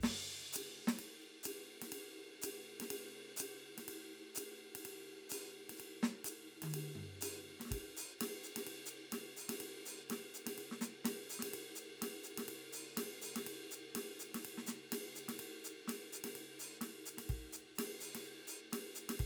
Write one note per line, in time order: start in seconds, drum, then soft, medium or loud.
0.01 snare medium
0.01 hi-hat pedal soft
0.01 ride medium
0.41 snare soft
0.53 hi-hat pedal loud
0.53 ride medium
0.88 snare medium
0.88 ride medium
0.99 hi-hat pedal soft
0.99 ride medium
1.21 hi-hat pedal soft
1.43 hi-hat pedal medium
1.43 ride loud
1.82 snare soft
1.82 ride medium
1.87 hi-hat pedal soft
1.92 ride medium
2.42 hi-hat pedal medium
2.42 ride loud
2.80 snare soft
2.80 ride medium
2.91 ride loud
3.37 hi-hat pedal loud
3.37 ride loud
3.78 snare soft
3.78 hi-hat pedal soft
3.78 ride medium
3.88 ride medium
4.35 hi-hat pedal loud
4.35 ride medium
4.75 hi-hat pedal soft
4.75 ride medium
4.85 ride medium
5.30 hi-hat pedal medium
5.30 ride loud
5.70 snare soft
5.70 ride medium
5.77 hi-hat pedal soft
5.77 ride medium
6.03 snare medium
6.25 hi-hat pedal loud
6.25 ride medium
6.62 high tom medium
6.62 ride medium
6.70 hi-hat pedal soft
6.74 ride medium
6.96 floor tom soft
7.21 hi-hat pedal loud
7.21 ride loud
7.60 snare soft
7.60 ride medium
7.66 snare soft
7.66 hi-hat pedal soft
7.69 kick soft
7.69 snare soft
7.69 ride loud
7.73 snare soft
7.97 hi-hat pedal medium
8.19 snare soft
8.19 hi-hat pedal soft
8.19 ride loud
8.44 hi-hat pedal medium
8.56 snare soft
8.56 ride loud
8.67 ride medium
8.86 hi-hat pedal medium
9.11 snare soft
9.11 hi-hat pedal soft
9.11 ride loud
9.37 hi-hat pedal medium
9.49 snare soft
9.49 ride loud
9.60 snare soft
9.60 hi-hat pedal soft
9.60 ride medium
9.86 hi-hat pedal medium
10.09 snare soft
10.09 hi-hat pedal soft
10.09 ride loud
10.34 hi-hat pedal medium
10.46 snare soft
10.46 ride loud
10.57 hi-hat pedal soft
10.57 ride medium
10.72 snare soft
10.81 snare medium
10.81 hi-hat pedal medium
11.05 snare medium
11.05 ride loud
11.30 hi-hat pedal medium
11.39 snare soft
11.39 ride loud
11.52 hi-hat pedal soft
11.52 ride medium
11.76 hi-hat pedal medium
11.98 snare soft
11.98 hi-hat pedal soft
12.02 ride loud
12.24 hi-hat pedal medium
12.38 snare soft
12.38 ride loud
12.47 hi-hat pedal soft
12.47 ride medium
12.73 hi-hat pedal medium
12.97 snare soft
12.97 ride loud
13.22 hi-hat pedal medium
13.36 snare soft
13.36 ride loud
13.46 hi-hat pedal soft
13.46 ride medium
13.71 hi-hat pedal medium
13.95 snare soft
13.95 hi-hat pedal soft
13.95 ride loud
14.20 hi-hat pedal medium
14.35 snare soft
14.35 ride medium
14.43 hi-hat pedal soft
14.43 ride medium
14.58 snare soft
14.67 snare soft
14.67 hi-hat pedal loud
14.90 snare soft
14.90 hi-hat pedal soft
14.90 ride loud
15.16 hi-hat pedal medium
15.29 snare soft
15.29 ride medium
15.39 hi-hat pedal soft
15.39 ride medium
15.65 hi-hat pedal medium
15.88 snare soft
15.88 hi-hat pedal soft
15.88 ride medium
16.13 hi-hat pedal medium
16.24 snare soft
16.24 ride loud
16.36 hi-hat pedal soft
16.36 ride medium
16.60 hi-hat pedal medium
16.81 snare soft
16.81 hi-hat pedal soft
16.81 ride medium
17.06 hi-hat pedal medium
17.18 snare soft
17.18 ride medium
17.28 kick soft
17.28 hi-hat pedal soft
17.28 ride medium
17.53 hi-hat pedal medium
17.76 snare soft
17.76 hi-hat pedal soft
17.76 ride loud
18.01 hi-hat pedal medium
18.15 snare soft
18.15 ride medium
18.24 hi-hat pedal soft
18.48 hi-hat pedal medium
18.71 snare soft
18.71 hi-hat pedal soft
18.71 ride loud
18.95 hi-hat pedal medium
19.09 snare soft
19.09 ride loud
19.19 kick soft
19.19 hi-hat pedal soft
19.19 ride medium